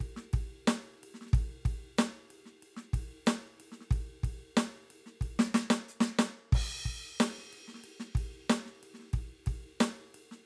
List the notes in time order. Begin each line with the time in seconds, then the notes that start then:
0.01 kick, ride
0.17 snare
0.34 kick, ride
0.68 snare, ride
1.04 ride
1.15 snare
1.22 snare
1.26 snare
1.34 kick, ride
1.66 kick, ride
1.99 snare, ride
2.31 ride
2.46 snare
2.63 ride
2.77 snare
2.94 kick, ride
3.27 snare, ride
3.60 ride
3.72 snare
3.81 snare
3.91 kick, ride
4.24 kick, ride
4.57 snare, ride
4.91 ride
5.07 snare
5.21 kick, ride
5.40 snare
5.55 snare, hi-hat pedal
5.71 snare
5.89 hi-hat pedal
6.01 snare
6.19 snare, hi-hat pedal
6.26 snare
6.47 snare
6.53 kick, crash
6.86 kick, ride
7.21 snare, ride
7.38 snare
7.53 ride
7.68 snare
7.75 snare
7.79 snare
7.84 ride
8.00 snare
8.15 kick, ride
8.50 snare, ride
8.66 snare
8.74 snare
8.83 ride
8.95 snare
8.99 snare
9.03 snare
9.07 snare
9.11 kick, snare, ride
9.15 snare
9.47 kick, ride
9.81 snare, ride
10.15 ride
10.32 snare